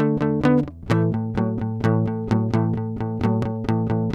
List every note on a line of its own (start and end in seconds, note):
0.00 0.22 D3
0.00 0.21 A3
0.23 0.44 D3
0.23 0.44 A3
0.45 0.68 D3
0.45 0.66 B3
0.92 1.15 A2
0.92 1.15 E3
0.92 1.27 A3
1.15 1.40 A2
1.15 1.31 E3
1.40 1.59 A2
1.40 1.61 F#3
1.40 1.68 G3
1.60 1.85 A2
1.60 1.77 F#3
1.86 2.33 A2
1.86 2.08 E3
1.86 2.15 A3
2.08 2.29 E3
2.33 2.55 A2
2.33 2.51 F#3
2.33 2.51 G#3
2.56 2.75 A2
2.56 2.79 E3
2.56 3.22 A3
2.75 3.02 A2
3.01 3.22 A2
3.01 3.21 E3
3.23 3.44 A2
3.27 3.45 F#3
3.27 3.48 G3
3.44 3.70 A2
3.49 3.57 F#3
3.70 3.92 A2
3.70 3.93 E3
3.90 4.15 A2
3.90 4.14 E3
3.90 4.14 A3